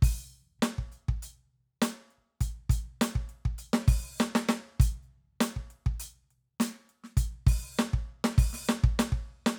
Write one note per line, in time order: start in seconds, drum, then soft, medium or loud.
0.03 open hi-hat loud
0.03 kick loud
0.59 open hi-hat loud
0.59 kick soft
0.59 snare loud
0.59 hi-hat pedal medium
0.79 kick medium
0.92 closed hi-hat soft
1.09 kick medium
1.09 crash soft
1.23 closed hi-hat medium
1.82 closed hi-hat loud
1.82 snare loud
2.11 closed hi-hat soft
2.18 kick soft
2.41 closed hi-hat loud
2.41 kick medium
2.70 closed hi-hat loud
2.70 kick loud
3.01 closed hi-hat loud
3.01 snare loud
3.16 kick medium
3.29 closed hi-hat soft
3.45 kick medium
3.58 closed hi-hat medium
3.73 snare loud
3.88 open hi-hat loud
3.88 kick loud
4.19 snare loud
4.19 hi-hat pedal medium
4.35 snare loud
4.49 snare loud
4.80 closed hi-hat loud
4.80 kick loud
5.03 hi-hat pedal soft
5.41 closed hi-hat loud
5.41 snare loud
5.57 kick medium
5.71 closed hi-hat soft
5.86 kick medium
5.86 crash soft
6.00 closed hi-hat loud
6.31 closed hi-hat soft
6.60 closed hi-hat loud
6.60 snare loud
6.89 closed hi-hat soft
7.04 snare soft
7.17 closed hi-hat loud
7.17 kick loud
7.47 open hi-hat loud
7.47 kick loud
7.78 snare loud
7.78 hi-hat pedal medium
7.94 kick medium
8.24 snare loud
8.38 open hi-hat loud
8.38 kick loud
8.53 open hi-hat loud
8.53 snare soft
8.67 snare loud
8.67 hi-hat pedal soft
8.84 kick loud
8.99 open hi-hat loud
8.99 snare loud
8.99 hi-hat pedal soft
9.12 kick medium
9.46 snare loud